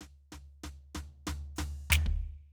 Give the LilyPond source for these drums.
\new DrumStaff \drummode { \time 4/4 \tempo 4 = 95 <sn tomfh>8 <sn tomfh>8 <sn tomfh>8 <sn tomfh>8 <sn tomfh>8 <hhp sn tomfh>8 <tomfh sn>16 bd8. | }